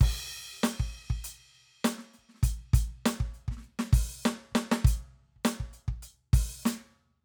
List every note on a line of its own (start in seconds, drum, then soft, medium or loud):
0.01 kick loud
0.01 hi-hat pedal medium
0.01 crash loud
0.34 closed hi-hat soft
0.64 closed hi-hat loud
0.64 kick soft
0.64 snare loud
0.80 kick medium
0.94 closed hi-hat soft
1.11 kick medium
1.11 crash soft
1.15 ride soft
1.25 closed hi-hat loud
1.56 closed hi-hat soft
1.85 closed hi-hat loud
1.85 snare loud
1.99 snare soft
2.14 closed hi-hat soft
2.14 snare soft
2.19 kick soft
2.29 snare soft
2.35 snare soft
2.37 snare soft
2.44 closed hi-hat loud
2.44 kick loud
2.74 closed hi-hat loud
2.74 kick loud
3.06 closed hi-hat loud
3.06 snare loud
3.21 kick medium
3.35 closed hi-hat soft
3.49 kick medium
3.49 snare soft
3.53 ride soft
3.58 snare soft
3.61 snare soft
3.61 closed hi-hat soft
3.80 snare loud
3.94 open hi-hat loud
3.94 kick loud
4.24 snare loud
4.24 hi-hat pedal medium
4.53 kick soft
4.53 snare loud
4.72 snare loud
4.85 closed hi-hat loud
4.85 kick loud
5.37 kick soft
5.45 closed hi-hat loud
5.45 snare loud
5.45 hi-hat pedal soft
5.61 kick medium
5.74 closed hi-hat soft
5.89 kick medium
5.93 ride soft
6.03 closed hi-hat medium
6.34 open hi-hat loud
6.34 kick loud
6.63 closed hi-hat loud
6.63 snare loud
6.63 hi-hat pedal medium